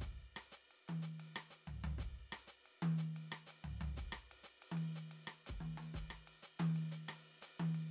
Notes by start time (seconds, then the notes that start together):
0.01 kick, hi-hat pedal, ride
0.36 cross-stick, ride
0.52 hi-hat pedal
0.71 ride
0.88 high tom, ride
1.02 hi-hat pedal
1.19 ride
1.36 cross-stick
1.50 hi-hat pedal, ride
1.67 floor tom
1.84 floor tom, ride
1.98 kick, hi-hat pedal
2.03 ride
2.32 cross-stick, ride
2.47 hi-hat pedal
2.65 ride
2.82 high tom, ride
2.98 hi-hat pedal
3.16 ride
3.32 cross-stick
3.46 hi-hat pedal, ride
3.64 floor tom
3.81 floor tom, ride
3.97 kick, hi-hat pedal, ride
4.12 cross-stick
4.31 ride
4.43 hi-hat pedal
4.62 ride
4.71 high tom
4.77 ride
4.95 hi-hat pedal
5.11 ride
5.27 cross-stick
5.46 kick, hi-hat pedal, ride
5.60 high tom
5.77 high tom, ride
5.94 kick, hi-hat pedal, ride
6.10 cross-stick
6.27 ride
6.42 hi-hat pedal
6.59 high tom, ride
6.64 hi-hat pedal
6.76 ride
6.91 hi-hat pedal
7.08 cross-stick, ride
7.42 hi-hat pedal, ride
7.59 hi-hat pedal, high tom
7.74 ride